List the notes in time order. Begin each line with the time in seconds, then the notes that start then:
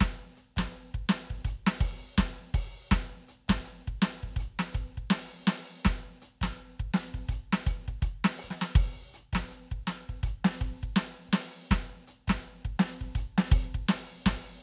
0.01 open hi-hat, kick, snare, hi-hat pedal
0.24 closed hi-hat
0.36 closed hi-hat, cross-stick
0.57 kick, snare, closed hi-hat
0.65 snare
0.74 closed hi-hat
0.95 kick, closed hi-hat
1.10 closed hi-hat, snare
1.31 kick, closed hi-hat
1.46 closed hi-hat, kick
1.68 snare
1.81 open hi-hat, kick
2.14 hi-hat pedal
2.19 closed hi-hat, kick, snare
2.55 open hi-hat, kick
2.92 open hi-hat, kick, snare, hi-hat pedal
3.13 closed hi-hat
3.29 closed hi-hat
3.49 kick, snare, closed hi-hat
3.66 closed hi-hat
3.88 kick, closed hi-hat
4.03 closed hi-hat, snare
4.24 kick, closed hi-hat
4.37 closed hi-hat, kick
4.60 snare
4.75 closed hi-hat, kick
4.98 kick
5.11 open hi-hat, snare, hi-hat pedal
5.48 open hi-hat, snare
5.86 open hi-hat, kick, snare, hi-hat pedal
6.07 closed hi-hat
6.23 closed hi-hat
6.42 kick, snare, closed hi-hat
6.58 closed hi-hat
6.80 kick, closed hi-hat
6.95 closed hi-hat, snare
7.15 kick, closed hi-hat
7.30 closed hi-hat, kick
7.54 snare
7.67 open hi-hat, kick, hi-hat pedal
7.89 kick, closed hi-hat
8.02 closed hi-hat, kick, hi-hat pedal
8.25 snare
8.39 open hi-hat
8.45 kick, hi-hat pedal
8.51 snare
8.62 snare
8.76 open hi-hat, kick
9.13 closed hi-hat, hi-hat pedal
9.34 kick, snare, closed hi-hat
9.52 closed hi-hat
9.72 kick
9.88 closed hi-hat, snare
10.10 kick, closed hi-hat
10.24 closed hi-hat, kick
10.45 snare
10.61 closed hi-hat, kick
10.83 kick, closed hi-hat
10.97 open hi-hat, snare, hi-hat pedal
11.29 kick
11.34 open hi-hat, snare
11.72 open hi-hat, kick, snare, hi-hat pedal
11.94 closed hi-hat
12.08 closed hi-hat
12.28 kick, snare, closed hi-hat
12.44 closed hi-hat
12.66 kick, closed hi-hat
12.80 closed hi-hat, snare
13.02 kick, closed hi-hat
13.16 closed hi-hat, kick
13.39 snare
13.52 open hi-hat, kick
13.64 hi-hat pedal
13.75 kick
13.86 kick, snare
13.90 open hi-hat
14.27 open hi-hat, kick, snare